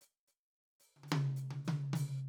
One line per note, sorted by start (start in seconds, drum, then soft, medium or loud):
0.01 hi-hat pedal soft
0.27 hi-hat pedal soft
0.80 hi-hat pedal soft
0.96 high tom soft
1.03 high tom soft
1.07 hi-hat pedal soft
1.07 high tom soft
1.12 high tom loud
1.36 hi-hat pedal soft
1.50 high tom medium
1.65 hi-hat pedal soft
1.65 high tom loud
1.93 hi-hat pedal medium
1.93 high tom loud